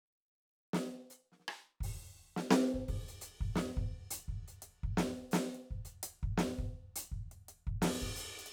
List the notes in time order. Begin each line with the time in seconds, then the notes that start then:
0.73 snare
1.10 hi-hat pedal
1.32 snare
1.40 snare
1.48 cross-stick
1.80 open hi-hat, kick
2.36 snare
2.50 snare, hi-hat pedal
2.74 kick
2.88 kick, crash
3.08 closed hi-hat
3.21 closed hi-hat
3.40 kick
3.56 snare
3.77 kick
4.11 closed hi-hat
4.28 kick
4.48 closed hi-hat
4.62 closed hi-hat
4.83 kick
4.97 snare
5.31 snare, hi-hat pedal
5.54 closed hi-hat
5.70 kick
5.85 closed hi-hat
6.03 closed hi-hat
6.23 kick
6.37 snare
6.58 kick
6.96 closed hi-hat
7.11 kick
7.31 closed hi-hat
7.48 closed hi-hat
7.67 kick
7.82 snare, crash
7.86 snare
8.01 kick
8.16 hi-hat pedal
8.39 closed hi-hat
8.46 closed hi-hat